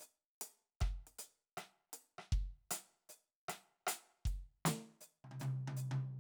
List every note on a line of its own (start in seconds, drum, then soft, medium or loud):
0.01 closed hi-hat soft
0.01 hi-hat pedal medium
0.42 closed hi-hat loud
0.81 kick medium
0.81 cross-stick soft
0.81 closed hi-hat soft
1.08 closed hi-hat soft
1.19 closed hi-hat medium
1.58 cross-stick medium
1.58 closed hi-hat medium
1.94 closed hi-hat medium
2.19 cross-stick soft
2.33 kick medium
2.33 closed hi-hat soft
2.71 open hi-hat loud
2.71 cross-stick medium
3.10 closed hi-hat soft
3.10 hi-hat pedal medium
3.49 cross-stick medium
3.49 closed hi-hat medium
3.87 closed hi-hat loud
3.87 cross-stick medium
4.26 kick medium
4.26 closed hi-hat soft
4.66 open hi-hat loud
4.66 snare medium
5.01 hi-hat pedal medium
5.25 high tom soft
5.32 high tom medium
5.40 hi-hat pedal soft
5.40 high tom medium
5.68 high tom medium
5.77 hi-hat pedal medium
5.92 high tom medium